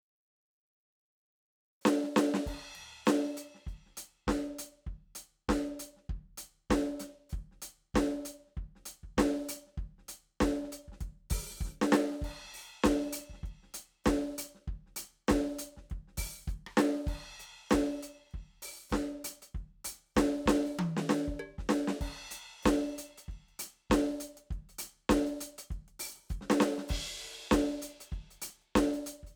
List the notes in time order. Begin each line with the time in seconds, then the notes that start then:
1.81 snare, hi-hat pedal
2.03 snare
2.16 snare
2.34 snare
2.46 kick, crash
2.75 snare, floor tom, ride
3.06 snare, hi-hat pedal
3.37 closed hi-hat
3.54 snare
3.66 closed hi-hat, kick
3.86 snare
3.97 closed hi-hat
4.27 kick, snare
4.58 closed hi-hat
4.86 kick
5.15 closed hi-hat
5.48 kick, snare
5.73 snare
5.79 closed hi-hat
5.96 snare
6.06 kick, closed hi-hat
6.37 closed hi-hat
6.70 kick, snare
6.99 closed hi-hat, snare
7.29 kick, hi-hat pedal
7.51 snare
7.62 closed hi-hat
7.94 kick, snare
8.19 snare
8.25 closed hi-hat
8.47 snare
8.54 kick, closed hi-hat
8.75 snare
8.85 closed hi-hat
9.03 kick
9.17 kick, snare
9.44 snare
9.49 closed hi-hat
9.66 snare
9.77 kick, closed hi-hat
9.98 snare
10.08 closed hi-hat
10.40 kick, snare
10.63 snare
10.72 closed hi-hat
10.88 kick
10.92 snare
11.00 kick, closed hi-hat
11.30 open hi-hat, kick
11.50 snare
11.60 kick
11.65 snare
11.81 snare
11.92 snare
12.12 snare
12.21 kick, crash
12.44 snare
12.54 open hi-hat
12.84 kick, snare, hi-hat pedal
13.05 snare
13.13 closed hi-hat
13.29 kick, snare
13.43 kick, closed hi-hat
13.63 snare
13.74 closed hi-hat
14.04 kick, snare, hi-hat pedal
14.30 snare
14.38 closed hi-hat
14.54 snare
14.67 kick, closed hi-hat
14.86 snare
14.96 closed hi-hat
15.27 kick, snare, hi-hat pedal
15.58 closed hi-hat
15.76 kick, snare
15.90 kick, closed hi-hat
16.07 snare
16.17 open hi-hat, kick
16.47 kick, hi-hat pedal
16.66 cross-stick
16.77 snare
17.07 kick, crash
17.39 closed hi-hat
17.70 kick, snare, hi-hat pedal
18.02 closed hi-hat
18.31 kick, closed hi-hat
18.57 closed hi-hat
18.62 open hi-hat
18.89 kick, snare, hi-hat pedal
19.24 closed hi-hat
19.42 closed hi-hat
19.54 kick, closed hi-hat
19.84 open hi-hat, kick
20.06 open hi-hat
20.14 kick, snare, hi-hat pedal
20.46 kick, snare
20.65 open hi-hat
20.73 hi-hat pedal
20.79 kick, high tom
20.97 snare
21.09 snare
21.27 kick
21.39 percussion
21.58 kick, snare
21.69 snare
21.87 snare
22.01 kick, crash
22.31 closed hi-hat
22.62 kick, snare, hi-hat pedal
22.98 closed hi-hat
23.17 closed hi-hat
23.28 kick, closed hi-hat
23.48 closed hi-hat
23.59 closed hi-hat
23.90 kick, snare
24.20 closed hi-hat
24.37 closed hi-hat
24.50 kick, closed hi-hat
24.69 closed hi-hat
24.78 closed hi-hat
25.09 kick, snare
25.26 closed hi-hat
25.40 closed hi-hat
25.58 closed hi-hat
25.70 kick, closed hi-hat
25.88 closed hi-hat
25.99 open hi-hat
26.16 open hi-hat
26.29 kick, hi-hat pedal
26.41 snare
26.50 snare
26.60 snare
26.78 snare
26.88 kick, hi-hat pedal, ride
27.06 closed hi-hat
27.20 crash
27.51 kick, snare
27.70 closed hi-hat
27.82 closed hi-hat
28.00 closed hi-hat
28.12 kick, closed hi-hat
28.30 closed hi-hat
28.42 closed hi-hat
28.61 closed hi-hat
28.75 kick, snare
28.93 closed hi-hat
29.06 closed hi-hat
29.23 closed hi-hat, kick